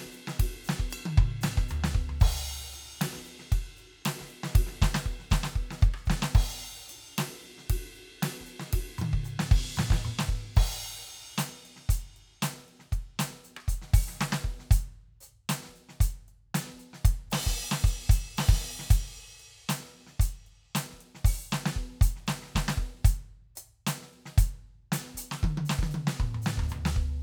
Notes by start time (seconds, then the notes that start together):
0.01 snare
0.04 kick, snare
0.06 snare
0.09 snare, hi-hat pedal
0.15 ride
0.28 snare
0.40 kick, ride
0.64 hi-hat pedal, ride bell
0.69 snare
0.80 kick, snare
0.90 hi-hat pedal, ride bell
1.06 high tom
1.18 kick, mid tom
1.42 snare, hi-hat pedal, ride bell
1.57 kick, snare
1.69 floor tom, hi-hat pedal
1.84 snare
1.95 kick
2.10 floor tom
2.21 kick, hi-hat pedal, crash
2.72 hi-hat pedal, ride
3.01 snare, ride
3.13 snare
3.17 kick, snare
3.25 hi-hat pedal, ride
3.39 snare
3.52 kick, ride bell
3.77 hi-hat pedal, ride
4.06 snare, ride
4.19 kick, snare
4.21 snare
4.25 snare, hi-hat pedal
4.31 ride
4.44 snare
4.55 kick, hi-hat pedal, ride
4.67 snare
4.72 snare
4.77 snare
4.82 kick, snare, hi-hat pedal
4.95 snare
5.05 kick, hi-hat pedal
5.20 snare
5.31 kick, snare, hi-hat pedal
5.44 snare
5.56 kick, snare
5.71 snare
5.82 kick, hi-hat pedal
5.94 cross-stick
6.06 kick, hi-hat pedal
6.10 snare
6.22 snare
6.35 kick, crash
6.89 hi-hat pedal, ride
7.18 snare, ride
7.41 hi-hat pedal, ride
7.58 snare
7.70 kick, ride
7.94 hi-hat pedal, ride
8.23 snare, ride
8.40 kick, snare
8.46 hi-hat pedal, ride
8.60 snare
8.73 kick, ride
8.98 hi-hat pedal, mid tom, high tom
9.13 kick
9.25 hi-hat pedal, ride, floor tom
9.40 snare
9.52 kick, ride
9.76 snare, hi-hat pedal, mid tom
9.91 kick, snare
10.03 hi-hat pedal, mid tom
10.19 snare
10.27 kick, hi-hat pedal
10.55 kick, hi-hat pedal, crash
11.38 closed hi-hat, snare
11.53 snare
11.56 snare
11.66 closed hi-hat
11.77 snare
11.89 closed hi-hat, kick
12.17 closed hi-hat
12.43 closed hi-hat, snare
12.54 snare
12.56 snare
12.68 closed hi-hat
12.80 snare
12.93 kick, closed hi-hat
13.19 closed hi-hat, snare
13.31 snare
13.45 closed hi-hat
13.57 cross-stick
13.68 closed hi-hat, kick
13.82 snare
13.87 snare
13.91 open hi-hat, kick, snare
14.08 snare
14.11 snare
14.14 snare
14.16 snare
14.20 snare, hi-hat pedal
14.33 snare
14.45 kick
14.60 snare
14.71 closed hi-hat, kick
15.21 closed hi-hat, hi-hat pedal
15.49 closed hi-hat, snare
15.62 snare
15.65 snare
15.69 kick
15.76 closed hi-hat
15.89 snare
16.01 closed hi-hat, kick
16.28 closed hi-hat
16.55 closed hi-hat, snare
16.67 snare
16.71 kick, snare
16.76 closed hi-hat, snare
16.94 snare
17.05 kick, closed hi-hat
17.28 kick, hi-hat pedal
17.32 snare, crash
17.47 kick, snare
17.56 snare
17.72 snare
17.84 closed hi-hat, kick
18.10 closed hi-hat, kick
18.16 snare
18.35 snare, hi-hat pedal, crash
18.49 kick, snare
18.54 snare
18.61 snare
18.79 snare
18.87 closed hi-hat, kick, snare
19.40 closed hi-hat
19.69 closed hi-hat, snare
19.80 snare
19.84 snare
19.90 snare
20.07 snare
20.20 closed hi-hat, kick
20.47 closed hi-hat
20.75 closed hi-hat, snare
20.91 kick, snare
20.95 snare
21.01 closed hi-hat
21.15 snare
21.25 open hi-hat, kick, snare
21.51 snare, hi-hat pedal
21.66 snare
21.76 kick
22.02 closed hi-hat, kick
22.17 snare
22.22 snare
22.27 snare, hi-hat pedal
22.42 snare
22.45 snare
22.48 snare
22.51 snare
22.56 kick, snare
22.68 snare
22.78 kick
23.05 closed hi-hat, kick
23.56 closed hi-hat, hi-hat pedal
23.87 closed hi-hat, snare
24.02 snare
24.13 closed hi-hat
24.26 snare
24.38 closed hi-hat, kick
24.92 closed hi-hat, snare
25.06 snare
25.09 snare
25.14 closed hi-hat, kick, snare
25.32 snare
25.43 kick, high tom
25.58 high tom
25.66 hi-hat pedal
25.70 snare
25.79 kick, snare
25.83 high tom
25.91 hi-hat pedal, high tom
26.07 snare
26.20 kick, mid tom
26.35 mid tom
26.42 hi-hat pedal
26.46 snare
26.58 kick, floor tom
26.62 snare
26.69 floor tom, hi-hat pedal
26.86 snare
26.93 kick, hi-hat pedal